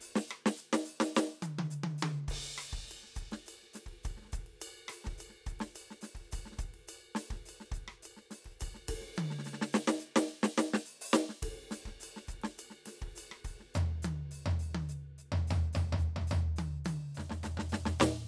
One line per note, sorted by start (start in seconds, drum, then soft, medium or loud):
0.01 hi-hat pedal medium
0.16 snare loud
0.28 cross-stick medium
0.28 hi-hat pedal medium
0.46 snare loud
0.57 hi-hat pedal medium
0.73 snare loud
0.85 hi-hat pedal medium
1.00 snare loud
1.15 snare loud
1.15 hi-hat pedal medium
1.42 hi-hat pedal medium
1.42 high tom loud
1.59 high tom loud
1.71 hi-hat pedal medium
1.84 high tom loud
1.98 hi-hat pedal medium
2.03 high tom loud
2.28 kick medium
2.28 hi-hat pedal medium
2.28 ride loud
2.58 cross-stick medium
2.58 hi-hat pedal medium
2.73 kick medium
2.73 snare soft
2.88 hi-hat pedal soft
2.88 ride bell medium
3.03 snare soft
3.16 kick soft
3.16 hi-hat pedal medium
3.16 ride soft
3.32 snare medium
3.32 ride soft
3.46 hi-hat pedal medium
3.46 ride bell medium
3.62 snare soft
3.74 snare soft
3.74 hi-hat pedal medium
3.74 ride medium
3.86 kick soft
3.86 ride soft
4.04 kick medium
4.04 hi-hat pedal soft
4.04 ride bell soft
4.17 snare soft
4.22 snare soft
4.25 snare soft
4.28 snare soft
4.32 kick medium
4.32 hi-hat pedal medium
4.32 ride soft
4.47 ride soft
4.61 hi-hat pedal soft
4.61 ride bell medium
4.88 cross-stick medium
4.88 hi-hat pedal medium
4.88 ride medium
5.05 kick medium
5.05 snare soft
5.18 hi-hat pedal medium
5.18 ride bell medium
5.30 snare soft
5.47 kick medium
5.47 hi-hat pedal medium
5.47 ride soft
5.60 snare medium
5.60 ride soft
5.75 hi-hat pedal medium
5.75 ride bell medium
5.91 snare soft
6.01 snare soft
6.01 hi-hat pedal medium
6.01 ride soft
6.15 kick soft
6.15 ride soft
6.32 kick medium
6.32 hi-hat pedal medium
6.32 ride bell medium
6.46 snare soft
6.52 snare soft
6.57 kick medium
6.57 snare soft
6.57 hi-hat pedal medium
6.57 ride soft
6.67 snare soft
6.74 ride soft
6.88 hi-hat pedal medium
6.88 ride bell medium
7.15 snare medium
7.15 hi-hat pedal medium
7.15 ride medium
7.30 kick soft
7.30 snare soft
7.46 hi-hat pedal medium
7.46 ride bell medium
7.60 snare soft
7.72 kick medium
7.72 hi-hat pedal medium
7.76 ride soft
7.88 cross-stick medium
8.03 hi-hat pedal medium
8.03 ride bell medium
8.17 snare soft
8.31 snare soft
8.31 hi-hat pedal medium
8.31 ride soft
8.45 kick soft
8.45 ride soft
8.60 kick medium
8.60 hi-hat pedal medium
8.60 ride bell medium
8.75 snare soft
8.88 kick medium
8.88 hi-hat pedal medium
8.88 ride loud
9.01 snare soft
9.16 hi-hat pedal medium
9.16 high tom loud
9.31 snare soft
9.39 snare soft
9.45 snare soft
9.45 hi-hat pedal medium
9.54 snare soft
9.62 snare medium
9.73 snare loud
9.73 hi-hat pedal medium
9.88 snare loud
10.00 hi-hat pedal medium
10.16 snare loud
10.28 hi-hat pedal medium
10.43 snare loud
10.57 snare loud
10.57 hi-hat pedal medium
10.74 snare medium
10.85 hi-hat pedal medium
11.01 open hi-hat loud
11.13 snare loud
11.13 hi-hat pedal medium
11.29 snare soft
11.42 kick medium
11.42 hi-hat pedal medium
11.42 ride loud
11.58 kick soft
11.71 snare medium
11.71 hi-hat pedal medium
11.85 kick soft
11.85 snare soft
12.00 hi-hat pedal medium
12.00 ride bell medium
12.16 snare soft
12.28 kick soft
12.28 hi-hat pedal medium
12.28 ride soft
12.42 snare medium
12.42 ride soft
12.58 hi-hat pedal medium
12.58 ride bell medium
12.70 snare soft
12.86 snare soft
12.86 hi-hat pedal medium
12.86 ride medium
12.99 kick soft
12.99 ride soft
13.16 hi-hat pedal medium
13.16 ride bell medium
13.32 cross-stick medium
13.45 kick soft
13.45 hi-hat pedal medium
13.45 ride soft
13.60 snare soft
13.75 floor tom loud
13.75 hi-hat pedal medium
14.02 closed hi-hat soft
14.02 hi-hat pedal medium
14.02 high tom loud
14.31 hi-hat pedal medium
14.46 floor tom loud
14.59 hi-hat pedal medium
14.75 high tom loud
14.89 hi-hat pedal medium
15.18 hi-hat pedal soft
15.32 floor tom loud
15.48 floor tom loud
15.48 hi-hat pedal medium
15.73 floor tom loud
15.73 hi-hat pedal medium
15.93 floor tom loud
15.99 hi-hat pedal soft
16.16 floor tom loud
16.27 hi-hat pedal medium
16.31 floor tom loud
16.56 hi-hat pedal soft
16.56 high tom loud
16.85 hi-hat pedal medium
16.85 high tom loud
17.15 floor tom medium
17.15 hi-hat pedal medium
17.19 snare soft
17.30 snare soft
17.30 floor tom medium
17.43 snare soft
17.43 floor tom medium
17.43 hi-hat pedal medium
17.57 snare medium
17.57 floor tom medium
17.69 snare medium
17.69 floor tom medium
17.69 hi-hat pedal medium
17.86 snare medium
17.86 floor tom medium
17.99 snare loud
17.99 hi-hat pedal medium
17.99 floor tom loud